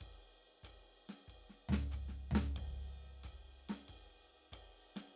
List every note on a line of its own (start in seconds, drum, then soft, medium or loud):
0.01 kick soft
0.01 ride medium
0.63 kick soft
0.63 hi-hat pedal medium
0.63 ride medium
1.09 snare soft
1.09 ride medium
1.28 kick soft
1.28 ride medium
1.50 snare soft
1.69 snare medium
1.69 floor tom medium
1.92 kick soft
1.92 hi-hat pedal medium
1.92 ride medium
2.09 snare soft
2.31 floor tom medium
2.35 snare medium
2.56 kick soft
2.56 ride loud
3.24 kick soft
3.24 hi-hat pedal medium
3.24 ride medium
3.69 snare soft
3.69 ride medium
3.88 kick soft
3.88 ride medium
4.52 kick soft
4.52 hi-hat pedal medium
4.52 ride loud
4.96 snare soft
4.96 ride medium